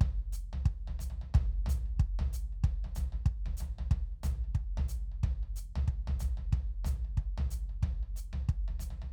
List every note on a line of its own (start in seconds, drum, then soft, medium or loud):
0.01 kick medium
0.01 floor tom loud
0.20 floor tom soft
0.24 floor tom soft
0.33 floor tom soft
0.33 hi-hat pedal medium
0.53 floor tom loud
0.66 kick medium
0.66 floor tom soft
0.88 floor tom medium
0.99 floor tom medium
0.99 hi-hat pedal medium
1.10 floor tom medium
1.22 floor tom medium
1.34 kick medium
1.34 floor tom loud
1.53 floor tom soft
1.66 floor tom loud
1.66 hi-hat pedal medium
1.86 floor tom soft
2.00 kick medium
2.19 floor tom loud
2.33 floor tom soft
2.33 hi-hat pedal medium
2.53 floor tom soft
2.64 kick medium
2.64 floor tom medium
2.84 floor tom medium
2.95 floor tom loud
2.95 hi-hat pedal medium
3.12 floor tom medium
3.26 kick medium
3.46 floor tom medium
3.57 floor tom medium
3.57 hi-hat pedal medium
3.79 floor tom medium
3.91 kick medium
3.91 floor tom medium
4.12 floor tom soft
4.24 floor tom loud
4.24 hi-hat pedal medium
4.44 floor tom soft
4.55 kick medium
4.55 floor tom soft
4.77 floor tom loud
4.89 floor tom soft
4.89 hi-hat pedal medium
5.12 floor tom soft
5.23 kick medium
5.23 floor tom loud
5.43 floor tom soft
5.56 floor tom soft
5.56 hi-hat pedal medium
5.76 floor tom loud
5.88 kick medium
5.88 floor tom soft
6.08 floor tom loud
6.20 floor tom medium
6.20 hi-hat pedal medium
6.37 floor tom medium
6.53 kick medium
6.53 floor tom medium
6.85 floor tom loud
6.85 hi-hat pedal medium
7.05 floor tom soft
7.17 kick medium
7.17 floor tom soft
7.38 floor tom loud
7.51 floor tom soft
7.51 hi-hat pedal medium
7.69 floor tom soft
7.83 kick medium
7.83 floor tom loud
8.03 floor tom soft
8.16 floor tom soft
8.16 hi-hat pedal medium
8.33 floor tom loud
8.49 kick medium
8.49 floor tom soft
8.68 kick soft
8.68 floor tom medium
8.80 floor tom medium
8.80 hi-hat pedal medium
8.91 floor tom medium
9.02 floor tom medium